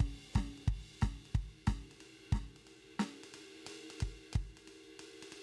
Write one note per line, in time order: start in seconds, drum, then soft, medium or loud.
0.01 kick soft
0.01 ride medium
0.34 kick soft
0.34 snare medium
0.34 hi-hat pedal soft
0.34 ride medium
0.58 ride soft
0.68 kick soft
0.68 ride medium
1.02 kick soft
1.02 snare medium
1.02 hi-hat pedal soft
1.02 ride medium
1.26 ride soft
1.35 kick soft
1.35 ride medium
1.67 kick soft
1.67 snare medium
1.67 hi-hat pedal soft
1.67 ride medium
1.92 ride soft
2.01 ride medium
2.33 kick soft
2.33 snare medium
2.33 ride medium
2.57 ride soft
2.68 ride soft
3.00 snare medium
3.00 ride medium
3.24 ride soft
3.35 ride medium
3.67 ride medium
3.91 ride soft
4.03 kick soft
4.34 kick soft
4.34 ride medium
4.58 ride medium
4.68 ride medium
5.00 ride medium
5.23 ride soft
5.33 ride soft